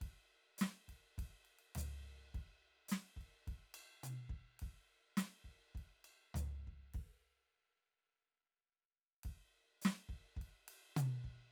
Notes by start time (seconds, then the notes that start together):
0.01 kick, ride
0.58 snare, hi-hat pedal
0.63 ride
0.88 kick, ride
1.18 kick, ride
1.45 ride
1.59 ride
1.75 floor tom, hi-hat pedal, ride
2.34 kick, ride
2.88 snare, hi-hat pedal
2.93 ride
3.16 kick
3.21 ride
3.47 kick, ride
3.74 ride bell
4.03 hi-hat pedal, high tom
4.29 kick
4.59 kick, ride
5.17 snare, hi-hat pedal, ride
5.44 kick
5.75 kick, ride
6.04 ride bell
6.34 floor tom, hi-hat pedal
6.67 kick
6.94 kick, crash
9.23 kick, ride
9.81 snare, hi-hat pedal, ride
10.09 kick
10.36 kick
10.41 ride
10.68 ride
10.96 hi-hat pedal, high tom
11.24 kick